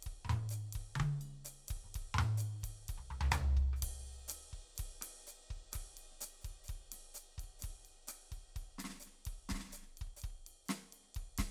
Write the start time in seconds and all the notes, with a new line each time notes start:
0.01 hi-hat pedal, ride
0.06 kick
0.12 kick
0.25 mid tom
0.30 mid tom, ride
0.49 hi-hat pedal, ride
0.73 kick, ride
0.81 kick
0.95 high tom
1.00 kick, high tom
1.05 kick
1.21 ride bell
1.45 hi-hat pedal, ride
1.68 kick, hi-hat pedal, ride
1.76 kick
1.84 mid tom
1.94 kick, ride
2.02 kick
2.14 mid tom
2.19 mid tom
2.28 mid tom
2.37 hi-hat pedal, ride
2.60 kick, hi-hat pedal
2.64 ride
2.69 kick
2.88 kick, ride
2.95 kick, floor tom
3.10 floor tom
3.21 floor tom
3.31 hi-hat pedal, floor tom
3.57 kick
3.62 kick
3.73 cross-stick, hi-hat pedal
3.82 kick, ride
3.89 kick
4.28 snare, hi-hat pedal, ride
4.53 kick
4.58 kick
4.75 hi-hat pedal, ride
4.79 kick
4.85 kick
5.01 cross-stick, snare, ride
5.27 hi-hat pedal
5.50 kick, ride
5.56 kick
5.72 kick, cross-stick, snare, hi-hat pedal, ride
5.81 kick
5.97 ride
6.11 snare
6.21 snare, hi-hat pedal, ride
6.41 kick, hi-hat pedal, ride
6.50 kick
6.64 hi-hat pedal
6.68 kick, ride
6.75 kick
6.91 snare, ride
7.14 hi-hat pedal, ride
7.38 kick, ride
7.43 kick
7.59 snare, hi-hat pedal, ride
7.64 kick
7.69 kick
7.85 ride
7.96 snare
8.07 cross-stick, snare, hi-hat pedal, ride
8.32 kick, ride
8.37 kick
8.56 kick, ride
8.62 kick
8.78 snare, ride
8.84 snare
8.89 snare
8.95 snare
9.00 snare, hi-hat pedal, ride
9.06 snare
9.12 snare
9.18 snare
9.22 snare, ride
9.27 kick
9.32 kick
9.49 kick, snare, ride
9.55 kick, snare
9.64 snare
9.69 snare, hi-hat pedal
9.73 snare, ride
9.76 snare
9.80 snare
9.82 snare
9.88 snare
9.97 kick, ride
10.07 kick
10.17 hi-hat pedal
10.22 kick, ride
10.30 kick
10.47 ride
10.65 snare, hi-hat pedal, ride
10.93 ride
11.03 snare
11.15 kick, ride
11.22 kick
11.38 kick, snare, ride